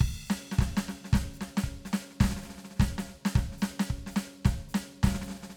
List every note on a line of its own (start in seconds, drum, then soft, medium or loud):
0.01 kick loud
0.01 ride soft
0.26 hi-hat pedal medium
0.30 snare loud
0.52 snare medium
0.59 kick loud
0.59 snare loud
0.77 snare loud
0.77 hi-hat pedal medium
0.89 snare medium
1.05 snare medium
1.13 kick loud
1.13 snare loud
1.34 hi-hat pedal medium
1.41 snare medium
1.57 snare loud
1.64 kick medium
1.85 snare medium
1.85 hi-hat pedal medium
1.93 snare loud
2.11 snare soft
2.21 kick loud
2.21 snare loud
2.24 snare loud
2.28 snare medium
2.31 snare medium
2.37 snare medium
2.42 snare soft
2.42 hi-hat pedal medium
2.45 snare medium
2.50 snare medium
2.54 snare soft
2.58 snare medium
2.65 snare medium
2.71 snare soft
2.76 kick loud
2.76 snare soft
2.81 snare loud
2.99 snare loud
2.99 hi-hat pedal medium
3.09 snare soft
3.26 snare loud
3.36 kick loud
3.36 snare medium
3.52 snare soft
3.58 hi-hat pedal medium
3.62 snare loud
3.80 snare loud
3.90 kick medium
4.07 snare medium
4.11 hi-hat pedal medium
4.16 snare loud
4.45 kick loud
4.45 snare loud
4.69 hi-hat pedal medium
4.75 snare loud
5.03 kick loud
5.03 snare loud
5.07 snare loud
5.11 snare medium
5.15 snare medium
5.22 snare medium
5.22 hi-hat pedal medium
5.28 snare medium
5.30 snare medium
5.35 snare soft
5.40 snare soft
5.43 snare medium
5.50 snare medium